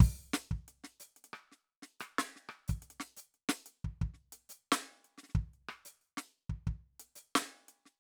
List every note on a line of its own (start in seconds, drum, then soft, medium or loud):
0.01 open hi-hat medium
0.01 kick loud
0.34 snare loud
0.34 hi-hat pedal soft
0.52 kick medium
0.69 closed hi-hat soft
0.84 snare soft
1.01 hi-hat pedal medium
1.17 closed hi-hat soft
1.25 closed hi-hat soft
1.34 cross-stick medium
1.52 snare soft
1.83 snare soft
2.01 cross-stick medium
2.01 hi-hat pedal medium
2.19 snare loud
2.37 snare soft
2.50 cross-stick medium
2.68 kick medium
2.68 hi-hat pedal medium
2.83 closed hi-hat soft
2.91 closed hi-hat soft
3.01 snare medium
3.17 hi-hat pedal medium
3.35 closed hi-hat soft
3.50 snare loud
3.67 closed hi-hat medium
3.85 kick soft
4.02 kick medium
4.14 snare soft
4.33 closed hi-hat medium
4.50 hi-hat pedal medium
4.73 snare loud
5.05 closed hi-hat soft
5.18 snare soft
5.24 snare soft
5.30 snare soft
5.36 kick medium
5.54 closed hi-hat soft
5.69 cross-stick medium
5.86 hi-hat pedal medium
6.02 open hi-hat soft
6.18 snare medium
6.50 kick soft
6.68 kick medium
7.00 closed hi-hat medium
7.16 hi-hat pedal medium
7.36 snare loud
7.42 snare soft
7.69 closed hi-hat soft
7.86 snare soft